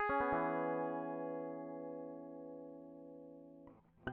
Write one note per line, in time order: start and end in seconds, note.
0.00 2.28 G#4
0.10 3.75 C#4
0.22 3.79 B3
0.34 3.75 E3